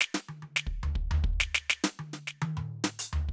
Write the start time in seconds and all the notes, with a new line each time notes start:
0.01 snare
0.14 snare
0.28 high tom
0.42 high tom
0.56 snare
0.67 kick
0.83 floor tom
0.95 kick
1.11 floor tom
1.24 kick
1.33 kick
1.40 snare
1.54 snare
1.70 snare
1.84 snare
1.99 high tom
2.13 snare
2.27 snare
2.42 high tom
2.57 mid tom
2.84 snare
2.99 closed hi-hat
3.13 floor tom
3.29 kick